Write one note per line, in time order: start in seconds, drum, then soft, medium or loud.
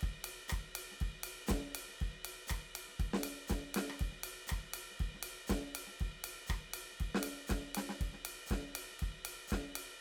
0.01 kick medium
0.01 ride medium
0.13 snare soft
0.24 ride loud
0.48 kick medium
0.48 cross-stick medium
0.48 hi-hat pedal loud
0.48 ride medium
0.75 ride loud
0.91 snare soft
1.01 kick medium
1.01 ride soft
1.14 snare soft
1.24 ride loud
1.47 kick medium
1.47 snare loud
1.47 hi-hat pedal loud
1.47 ride medium
1.75 ride loud
1.88 snare soft
2.01 kick medium
2.01 ride soft
2.14 snare soft
2.25 ride loud
2.47 kick soft
2.47 cross-stick medium
2.47 hi-hat pedal loud
2.47 ride medium
2.75 ride loud
2.88 snare soft
3.00 kick medium
3.00 ride medium
3.14 snare loud
3.24 ride loud
3.48 kick medium
3.48 snare medium
3.48 hi-hat pedal medium
3.48 ride medium
3.74 snare medium
3.74 ride loud
3.90 cross-stick medium
4.00 kick medium
4.00 ride medium
4.11 snare soft
4.14 snare soft
4.24 ride loud
4.47 cross-stick medium
4.47 hi-hat pedal loud
4.47 ride medium
4.52 kick medium
4.64 snare soft
4.74 ride loud
4.91 snare soft
5.00 kick medium
5.00 ride soft
5.14 snare soft
5.23 ride loud
5.47 kick medium
5.47 snare loud
5.47 hi-hat pedal loud
5.47 ride medium
5.75 ride loud
5.87 snare soft
6.00 kick medium
6.00 ride soft
6.15 snare soft
6.24 ride loud
6.47 kick medium
6.47 cross-stick medium
6.47 hi-hat pedal medium
6.47 ride medium
6.68 snare soft
6.74 ride loud
6.92 snare soft
7.00 kick medium
7.00 ride medium
7.15 snare loud
7.23 ride loud
7.47 kick medium
7.47 snare medium
7.47 hi-hat pedal medium
7.47 ride medium
7.75 snare medium
7.75 ride loud
7.89 snare medium
7.95 hi-hat pedal soft
8.01 kick medium
8.01 ride medium
8.13 snare soft
8.25 ride loud
8.46 hi-hat pedal medium
8.46 ride medium
8.51 kick medium
8.51 snare medium
8.68 snare soft
8.75 ride loud
8.91 snare soft
8.99 kick medium
8.99 ride medium
9.25 ride loud
9.48 hi-hat pedal medium
9.48 ride medium
9.52 kick soft
9.52 snare medium
9.76 ride loud